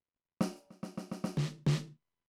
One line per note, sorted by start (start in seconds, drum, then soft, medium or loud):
0.41 snare medium
0.56 hi-hat pedal soft
0.70 snare soft
0.83 snare soft
0.97 snare soft
1.12 snare soft
1.24 snare medium
1.37 snare medium
1.66 snare loud